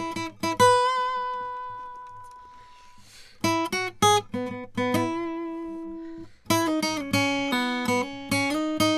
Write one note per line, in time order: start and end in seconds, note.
0.00 0.15 E4
0.17 0.33 E4
0.44 0.58 E4
0.60 0.88 B4
3.45 3.69 E4
3.73 3.93 F#4
4.03 4.23 G#4
4.35 4.47 B3
4.47 4.68 B3
4.78 5.16 B3
4.95 6.28 E4
6.51 6.67 E4
6.67 6.83 D#4
6.84 7.03 D#4
6.84 6.98 D#4
6.98 7.13 C#4
7.14 7.52 C#4
7.52 7.87 B3
7.90 8.02 B3
8.02 8.31 C#4
8.32 8.53 C#4
8.55 8.81 D#4
8.81 8.98 D#4